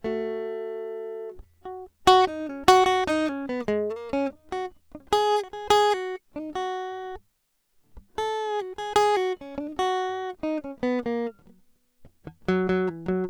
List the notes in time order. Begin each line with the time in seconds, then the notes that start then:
0.06 A3 F#4
1.67 F#4
2.09 F#4
2.30 D#4
2.48 C#4
2.70 F#4
2.85 F#4
3.09 D#4
3.28 C#4
3.51 B3
3.70 G#3
3.92 A#3
4.15 C#4
4.54 F#4
5.14 G#4
5.37 G#4
5.55 G#4
5.72 G#4
5.93 F#4
6.38 D#4
6.57 F#4
8.20 A4
8.61 F#4
8.80 G#4
8.98 G#4
9.18 F#4
9.43 C#4
9.60 D4
9.81 F#4
10.45 D#4
10.66 C#4
10.85 B3
11.08 A#3
12.50 F#3
12.71 F#3
12.90 E3
13.08 F#3